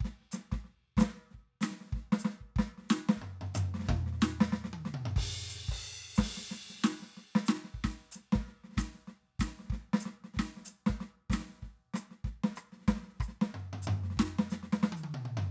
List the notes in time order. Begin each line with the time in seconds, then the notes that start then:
0.01 kick
0.05 snare
0.22 snare
0.32 snare, hi-hat pedal
0.37 snare
0.52 kick, snare
0.65 snare
0.97 kick, snare, hi-hat pedal
1.01 snare
1.13 snare
1.15 snare
1.31 kick, snare
1.35 snare
1.37 snare
1.61 snare, hi-hat pedal
1.63 snare
1.71 snare
1.74 snare
1.81 snare
1.86 snare
1.90 kick, snare
1.94 snare
1.96 snare
2.12 snare
2.19 hi-hat pedal
2.25 snare
2.30 snare
2.41 kick
2.56 kick, snare
2.78 snare
2.82 snare
2.86 snare, hi-hat pedal
2.91 snare
3.09 snare
3.17 kick
3.22 floor tom
3.42 floor tom
3.55 floor tom, hi-hat pedal
3.74 snare
3.80 snare
3.84 snare
3.89 kick, floor tom
4.07 snare
4.13 snare
4.18 snare, hi-hat pedal
4.22 snare
4.41 snare
4.48 kick
4.53 snare
4.65 snare
4.74 high tom
4.86 snare
4.94 mid tom
5.06 floor tom
5.17 kick, ride
5.50 hi-hat pedal
5.69 kick, crash
6.16 kick, snare, hi-hat pedal, ride
6.37 snare
6.51 snare
6.70 snare
6.75 snare
6.78 snare
6.81 snare, hi-hat pedal
6.84 snare
7.02 snare
7.17 snare
7.36 snare
7.46 snare, hi-hat pedal
7.65 snare
7.74 kick
7.84 kick, snare
8.12 snare, hi-hat pedal
8.33 kick, snare
8.48 snare
8.64 snare
8.69 snare
8.73 snare
8.76 kick, snare
8.78 snare, hi-hat pedal
8.95 snare
9.08 snare
9.40 kick, snare, hi-hat pedal
9.47 snare
9.60 snare
9.64 snare
9.68 kick, snare
9.73 snare
9.81 snare
9.94 snare
10.00 hi-hat pedal
10.06 snare
10.24 snare
10.37 kick, snare
10.39 snare
10.57 snare
10.62 snare
10.65 snare, hi-hat pedal
10.67 snare
10.87 kick, snare
11.01 snare
11.30 kick, snare, hi-hat pedal
11.34 snare
11.40 snare
11.45 snare
11.49 snare
11.54 snare
11.58 snare
11.62 kick, snare
11.94 cross-stick, snare, hi-hat pedal
12.11 snare
12.25 kick, snare
12.44 snare
12.56 cross-stick, hi-hat pedal
12.73 snare
12.77 snare
12.81 snare
12.88 kick, snare
12.96 snare
13.03 snare
13.08 snare
13.12 snare
13.15 snare
13.19 kick, cross-stick, snare, hi-hat pedal
13.28 snare
13.42 snare
13.55 floor tom
13.73 floor tom
13.83 hi-hat pedal
13.88 floor tom
14.04 snare
14.11 snare
14.16 kick, snare
14.20 snare
14.39 snare
14.50 snare, hi-hat pedal
14.63 snare
14.73 snare
14.83 snare
14.93 high tom
14.97 hi-hat pedal
15.04 high tom
15.15 mid tom
15.26 mid tom
15.37 floor tom